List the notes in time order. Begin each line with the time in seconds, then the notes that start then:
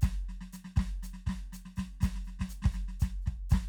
0.01 kick, snare, hi-hat pedal
0.04 snare
0.29 snare
0.41 snare
0.53 snare, hi-hat pedal
0.64 snare
0.76 kick, snare, hi-hat pedal
0.79 snare
1.03 snare, hi-hat pedal
1.13 snare
1.26 kick, snare
1.29 snare
1.52 snare, hi-hat pedal
1.65 snare
1.76 kick, snare, hi-hat pedal
1.79 snare
2.01 kick, snare, hi-hat pedal
2.04 snare
2.15 snare
2.24 snare, hi-hat pedal
2.39 kick, snare
2.41 snare
2.49 hi-hat pedal
2.62 snare
2.64 kick, snare
2.72 snare, hi-hat pedal
2.88 snare
3.00 kick, snare, hi-hat pedal
3.22 hi-hat pedal
3.26 kick, snare
3.50 kick, snare, hi-hat pedal
3.54 snare